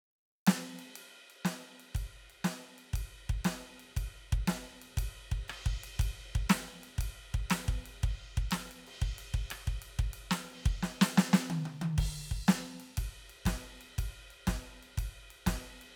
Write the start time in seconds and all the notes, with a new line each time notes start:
0.47 snare, ride
0.79 ride
0.96 ride
1.30 ride
1.45 snare, ride
1.80 ride
1.95 kick, ride
2.30 ride
2.44 snare, ride
2.78 ride
2.93 kick, ride
3.29 kick
3.45 snare, ride
3.80 ride
3.97 kick, ride
4.32 kick
4.47 snare, ride
4.82 ride
4.97 kick, ride
5.32 kick
5.48 cross-stick, ride
5.66 kick
5.84 ride
5.99 kick, ride
6.35 kick
6.49 snare, ride
6.83 ride
6.98 kick, ride
7.34 kick
7.50 snare, ride
7.68 kick
7.86 ride
8.03 kick, ride
8.37 kick
8.51 snare, ride
8.71 ride
8.87 ride
9.02 kick
9.18 ride
9.34 kick
9.50 cross-stick, ride
9.67 kick
9.82 ride
9.99 kick
10.13 ride
10.31 snare
10.50 ride
10.66 kick
10.83 snare
11.01 snare
11.18 snare
11.33 snare
11.50 high tom
11.65 high tom
11.81 high tom
11.98 kick, crash
12.31 kick
12.48 snare, ride
12.80 ride
12.97 kick, ride
13.30 ride
13.45 kick, snare, ride
13.81 ride
13.98 kick, ride
14.31 ride
14.47 kick, snare, ride
14.83 ride
14.97 kick, ride
15.31 ride
15.46 kick, snare, ride
15.81 ride